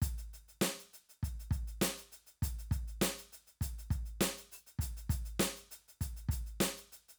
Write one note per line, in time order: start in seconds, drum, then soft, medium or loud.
0.01 closed hi-hat loud
0.01 kick medium
0.18 closed hi-hat medium
0.33 closed hi-hat medium
0.48 closed hi-hat soft
0.61 closed hi-hat medium
0.61 snare loud
0.79 open hi-hat medium
0.93 closed hi-hat medium
1.09 closed hi-hat soft
1.23 closed hi-hat medium
1.23 kick medium
1.39 closed hi-hat medium
1.51 closed hi-hat medium
1.51 kick medium
1.67 closed hi-hat soft
1.81 closed hi-hat loud
1.81 snare loud
1.81 hi-hat pedal soft
1.97 open hi-hat medium
2.12 closed hi-hat medium
2.26 closed hi-hat soft
2.42 closed hi-hat loud
2.42 kick medium
2.58 closed hi-hat medium
2.71 closed hi-hat medium
2.71 kick medium
2.87 closed hi-hat soft
3.01 closed hi-hat loud
3.01 snare loud
3.18 closed hi-hat medium
3.32 closed hi-hat medium
3.46 closed hi-hat soft
3.61 closed hi-hat loud
3.61 kick medium
3.78 closed hi-hat medium
3.90 closed hi-hat medium
3.90 kick medium
4.05 closed hi-hat soft
4.21 closed hi-hat loud
4.21 snare loud
4.37 closed hi-hat medium
4.51 open hi-hat medium
4.66 closed hi-hat medium
4.79 closed hi-hat loud
4.79 kick medium
4.96 closed hi-hat medium
5.09 closed hi-hat loud
5.09 kick medium
5.25 closed hi-hat soft
5.39 closed hi-hat loud
5.39 snare loud
5.56 closed hi-hat medium
5.71 closed hi-hat medium
5.88 closed hi-hat soft
6.01 closed hi-hat medium
6.01 kick medium
6.16 closed hi-hat medium
6.29 closed hi-hat loud
6.29 kick medium
6.46 closed hi-hat soft
6.60 closed hi-hat loud
6.60 snare loud
6.77 closed hi-hat medium
6.92 closed hi-hat medium
7.08 closed hi-hat medium